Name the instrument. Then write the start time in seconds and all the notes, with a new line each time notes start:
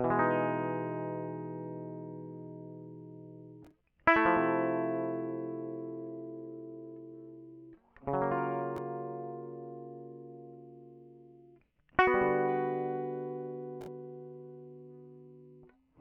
electric guitar
0.00 B2
0.05 E3
0.11 G#3
0.19 D#4
4.07 E4
4.16 A3
4.26 F3
4.38 C3
8.08 C#3
8.14 F#3
8.22 A#3
8.31 F4
11.99 F#4
12.07 B3
12.15 G3
12.22 D3